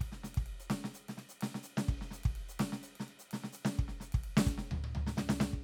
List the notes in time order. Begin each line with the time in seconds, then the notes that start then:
0.01 kick, ride
0.12 snare
0.24 snare, hi-hat pedal
0.35 kick, ride
0.46 ride
0.60 hi-hat pedal
0.70 snare, ride
0.84 snare
0.94 hi-hat pedal, ride
1.09 snare, ride
1.17 snare, ride
1.29 hi-hat pedal
1.41 snare, ride
1.55 snare
1.63 hi-hat pedal, ride
1.77 snare
1.89 kick, ride
2.01 snare
2.11 snare, hi-hat pedal
2.24 kick, ride
2.36 ride
2.49 hi-hat pedal
2.60 snare, ride
2.72 snare
2.83 hi-hat pedal, ride
2.96 ride
3.00 snare
3.08 ride
3.19 hi-hat pedal
3.31 snare, ride
3.44 snare
3.53 hi-hat pedal, ride
3.65 snare
3.78 kick, ride
3.88 snare
4.00 snare, hi-hat pedal
4.13 kick, ride
4.24 ride
4.37 snare
4.46 kick, hi-hat pedal, ride
4.58 snare
4.71 floor tom
4.84 high tom
4.95 floor tom
5.07 snare
5.17 snare
5.29 snare
5.40 snare
5.54 kick